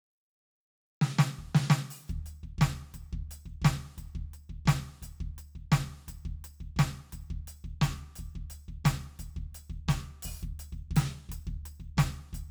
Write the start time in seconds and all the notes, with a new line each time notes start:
1.01 snare
1.18 snare
1.38 kick
1.55 snare
1.70 snare
1.90 percussion
2.08 kick, percussion
2.26 percussion
2.43 kick
2.58 kick, snare, percussion
2.94 kick, percussion
3.13 kick
3.31 percussion
3.46 kick
3.62 kick, snare, percussion
3.98 kick, percussion
4.15 kick
4.33 percussion
4.49 kick
4.65 kick, snare, percussion
5.02 kick, percussion
5.20 kick
5.38 percussion
5.55 kick
5.72 kick, snare, percussion
6.08 kick, percussion
6.25 kick
6.44 percussion
6.60 kick
6.76 kick, snare, percussion
7.12 kick, percussion
7.30 kick
7.47 percussion
7.64 kick
7.81 kick, snare, percussion
8.16 kick, percussion
8.35 kick
8.50 percussion
8.68 kick
8.84 kick, snare, percussion
9.19 kick, percussion
9.36 kick
9.54 percussion
9.70 kick
9.88 kick, snare, percussion
10.22 kick, percussion
10.39 kick, percussion
10.59 percussion
10.72 kick
10.91 kick
10.96 snare, percussion
11.29 kick, percussion
11.47 kick
11.65 percussion
11.80 kick
11.97 kick, snare, percussion
12.33 kick, percussion